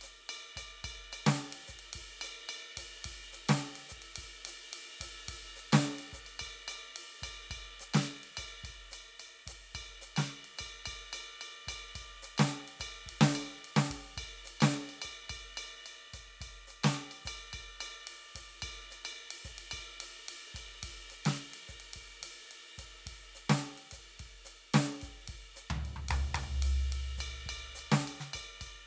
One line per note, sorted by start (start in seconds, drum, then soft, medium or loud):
0.01 hi-hat pedal medium
0.01 ride bell medium
0.29 ride bell loud
0.56 kick soft
0.56 hi-hat pedal medium
0.56 ride bell loud
0.84 kick soft
0.84 ride bell loud
0.89 kick soft
1.12 hi-hat pedal medium
1.12 ride bell loud
1.26 snare loud
1.26 ride loud
1.52 ride loud
1.67 kick soft
1.67 hi-hat pedal medium
1.79 ride medium
1.93 kick soft
1.93 closed hi-hat soft
1.93 ride loud
2.21 hi-hat pedal medium
2.21 ride bell loud
2.49 ride bell loud
2.77 kick soft
2.77 hi-hat pedal medium
2.77 ride loud
3.04 kick soft
3.04 ride loud
3.11 kick soft
3.33 hi-hat pedal medium
3.33 ride medium
3.49 snare loud
3.49 ride loud
3.75 snare soft
3.75 ride medium
3.81 snare soft
3.89 kick soft
3.89 hi-hat pedal medium
4.02 ride medium
4.16 kick soft
4.16 ride loud
4.45 hi-hat pedal medium
4.45 ride loud
4.73 ride loud
5.00 kick soft
5.00 hi-hat pedal medium
5.00 ride loud
5.28 kick soft
5.28 ride loud
5.36 kick soft
5.56 hi-hat pedal medium
5.56 ride medium
5.72 snare loud
5.72 ride bell loud
5.98 ride medium
6.13 kick soft
6.13 hi-hat pedal medium
6.23 snare soft
6.23 ride bell medium
6.39 kick soft
6.39 ride bell loud
6.68 hi-hat pedal medium
6.68 ride bell loud
6.96 ride loud
7.22 kick soft
7.22 hi-hat pedal medium
7.22 ride bell loud
7.50 kick soft
7.50 ride bell loud
7.80 hi-hat pedal medium
7.80 ride medium
7.94 snare loud
7.94 ride bell loud
8.23 ride medium
8.37 kick soft
8.37 hi-hat pedal medium
8.37 ride bell loud
8.64 kick soft
8.64 ride bell medium
8.70 kick soft
8.91 hi-hat pedal medium
8.91 ride bell medium
9.20 ride bell medium
9.45 kick soft
9.45 snare soft
9.45 hi-hat pedal medium
9.45 ride loud
9.75 kick soft
9.75 ride bell loud
9.83 kick soft
10.01 hi-hat pedal medium
10.01 ride medium
10.16 snare loud
10.16 ride bell loud
10.44 ride medium
10.58 kick soft
10.58 hi-hat pedal medium
10.58 ride bell loud
10.86 kick soft
10.86 ride bell loud
11.13 hi-hat pedal medium
11.13 ride bell loud
11.41 ride bell loud
11.67 kick soft
11.67 hi-hat pedal medium
11.67 ride bell loud
11.95 kick soft
11.95 ride bell loud
12.04 kick soft
12.22 hi-hat pedal medium
12.22 ride bell medium
12.38 snare loud
12.38 ride bell loud
12.68 ride medium
12.80 kick soft
12.80 hi-hat pedal medium
12.80 ride bell loud
13.06 kick soft
13.06 ride medium
13.21 snare loud
13.32 hi-hat pedal soft
13.32 ride bell loud
13.64 ride medium
13.76 snare loud
13.90 kick soft
13.90 hi-hat pedal soft
13.90 ride loud
13.95 kick soft
13.98 kick soft
14.17 kick soft
14.17 ride bell loud
14.23 kick soft
14.26 kick soft
14.45 hi-hat pedal medium
14.45 ride medium
14.60 snare loud
14.60 ride bell loud
14.89 ride bell medium
15.02 kick soft
15.02 hi-hat pedal medium
15.02 ride bell loud
15.29 kick soft
15.29 ride bell loud
15.35 kick soft
15.57 hi-hat pedal medium
15.57 ride bell loud
15.86 ride bell medium
16.13 kick soft
16.13 hi-hat pedal soft
16.13 ride bell medium
16.41 kick soft
16.41 ride bell medium
16.49 kick soft
16.67 hi-hat pedal medium
16.67 ride bell medium
16.84 snare loud
16.84 ride bell loud
17.11 ride bell medium
17.25 kick soft
17.25 hi-hat pedal medium
17.25 ride bell loud
17.31 kick soft
17.53 kick soft
17.53 ride bell loud
17.61 kick soft
17.80 hi-hat pedal medium
17.80 ride bell loud
18.07 ride loud
18.35 kick soft
18.35 hi-hat pedal medium
18.35 ride loud
18.62 kick soft
18.62 ride bell loud
18.68 kick soft
18.91 hi-hat pedal soft
18.91 ride bell medium
19.05 ride bell loud
19.30 ride loud
19.45 kick soft
19.45 hi-hat pedal medium
19.58 ride medium
19.71 kick soft
19.71 ride bell loud
20.00 hi-hat pedal soft
20.00 ride loud
20.28 ride loud
20.54 kick soft
20.54 hi-hat pedal soft
20.54 ride bell medium
20.60 kick soft
20.83 kick soft
20.83 ride loud
20.91 kick soft
21.10 hi-hat pedal medium
21.10 ride medium
21.25 snare loud
21.25 ride loud
21.53 ride medium
21.68 kick soft
21.68 hi-hat pedal medium
21.80 ride medium
21.93 kick soft
21.93 ride loud
22.21 snare soft
22.21 hi-hat pedal soft
22.21 ride loud
22.51 ride medium
22.78 kick soft
22.78 hi-hat pedal medium
22.78 ride medium
23.06 kick soft
23.06 ride medium
23.14 kick soft
23.35 hi-hat pedal medium
23.35 ride medium
23.49 snare loud
23.49 ride loud
23.78 ride medium
23.91 kick soft
23.91 hi-hat pedal medium
23.91 ride medium
24.19 kick soft
24.19 ride medium
24.45 hi-hat pedal medium
24.45 ride medium
24.74 snare loud
24.74 ride loud
25.01 kick soft
25.01 hi-hat pedal soft
25.01 ride medium
25.08 kick soft
25.11 kick soft
25.28 kick soft
25.28 ride medium
25.56 hi-hat pedal medium
25.56 ride bell soft
25.70 floor tom loud
25.85 ride medium
25.96 floor tom medium
26.08 kick soft
26.08 hi-hat pedal medium
26.08 ride loud
26.08 floor tom loud
26.34 ride loud
26.34 floor tom loud
26.43 floor tom soft
26.62 hi-hat pedal medium
26.62 ride loud
26.92 ride loud
27.18 kick soft
27.18 hi-hat pedal medium
27.18 ride bell loud
27.23 kick soft
27.46 kick soft
27.46 ride bell loud
27.55 kick soft
27.75 hi-hat pedal medium
27.79 ride bell medium
27.92 snare loud
28.07 ride bell medium
28.20 snare medium
28.33 kick soft
28.33 hi-hat pedal medium
28.33 ride bell loud
28.61 kick soft
28.61 snare soft
28.61 ride bell medium
28.69 kick soft